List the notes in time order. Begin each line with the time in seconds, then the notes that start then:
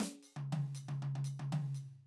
0.00 snare
0.23 hi-hat pedal
0.36 closed hi-hat, high tom
0.52 high tom
0.75 hi-hat pedal
0.88 closed hi-hat, high tom
1.02 high tom
1.15 high tom
1.24 hi-hat pedal
1.39 high tom
1.52 high tom
1.75 hi-hat pedal